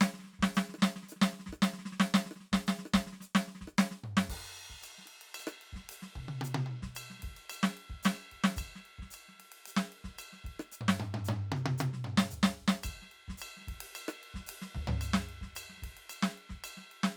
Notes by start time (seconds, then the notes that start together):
0.01 snare, hi-hat pedal
0.14 snare
0.20 snare
0.27 snare
0.34 snare
0.40 kick, snare
0.43 snare
0.55 snare, hi-hat pedal
0.70 snare
0.75 cross-stick
0.79 snare
0.83 snare
0.96 snare
1.03 snare
1.09 cross-stick, hi-hat pedal
1.22 snare
1.33 snare
1.40 snare
1.47 kick, snare
1.53 cross-stick
1.63 snare, hi-hat pedal
1.74 snare
1.79 snare
1.86 snare
1.93 snare
2.00 snare
2.15 snare, hi-hat pedal
2.26 snare
2.32 cross-stick
2.36 snare
2.41 snare
2.53 kick, snare
2.67 snare, hi-hat pedal
2.79 snare
2.86 cross-stick
2.94 kick, snare
3.07 snare
3.13 snare
3.21 snare, hi-hat pedal
3.36 snare
3.48 snare
3.56 snare
3.61 kick, snare
3.68 cross-stick
3.78 snare, hi-hat pedal
3.92 snare
4.04 mid tom
4.18 snare
4.29 kick, hi-hat pedal, crash
4.40 kick
4.70 kick
4.83 hi-hat pedal, ride bell
4.99 snare
5.06 cross-stick, ride
5.22 ride
5.35 ride bell
5.40 hi-hat pedal
5.48 cross-stick
5.62 ride
5.73 kick, snare
5.78 kick
5.90 hi-hat pedal, ride
6.03 snare
6.16 kick, high tom
6.29 high tom
6.42 hi-hat pedal, high tom
6.55 high tom
6.67 high tom
6.83 kick, snare
6.96 hi-hat pedal, ride bell
7.11 snare
7.20 snare, ride
7.24 kick, snare
7.30 kick, snare
7.37 snare, ride bell
7.50 hi-hat pedal, ride bell
7.64 snare
7.78 ride
7.90 kick
7.96 kick
8.04 snare, hi-hat pedal, ride bell
8.15 snare
8.32 kick, ride
8.44 snare
8.52 snare
8.57 kick, hi-hat pedal, ride bell
8.64 kick
8.68 kick
8.76 snare
8.86 ride
8.99 kick, snare
9.11 hi-hat pedal, ride bell
9.29 snare
9.36 snare
9.40 snare, ride
9.53 ride
9.66 hi-hat pedal, ride
9.77 snare
9.93 ride
10.05 kick, snare
10.10 kick
10.19 hi-hat pedal, ride bell
10.33 snare
10.45 kick, ride
10.60 cross-stick
10.72 hi-hat pedal
10.82 mid tom
10.89 snare
11.00 mid tom
11.15 mid tom
11.25 hi-hat pedal
11.29 mid tom
11.53 high tom
11.57 cross-stick
11.66 high tom
11.79 hi-hat pedal, high tom
11.94 snare
12.05 mid tom
12.18 snare
12.31 floor tom, hi-hat pedal
12.44 snare
12.60 kick
12.68 snare
12.84 kick, hi-hat pedal, ride bell
12.97 kick
13.03 snare
13.12 ride
13.29 kick, snare
13.34 kick
13.38 hi-hat pedal
13.42 ride bell
13.57 snare
13.61 snare
13.65 snare
13.67 kick, snare, ride
13.75 kick
13.81 ride
13.96 hi-hat pedal, ride bell
14.09 cross-stick
14.24 ride
14.35 kick, snare
14.47 hi-hat pedal, ride
14.62 snare
14.75 kick, floor tom
14.88 floor tom
15.02 hi-hat pedal, ride bell
15.14 snare
15.30 ride
15.42 kick, snare
15.47 kick
15.56 hi-hat pedal, ride bell
15.70 snare
15.78 snare
15.83 kick, ride
15.98 ride
16.10 hi-hat pedal, ride bell
16.23 snare
16.29 snare
16.38 ride
16.50 kick, snare
16.65 hi-hat pedal, ride bell
16.78 snare
16.92 ride
17.04 snare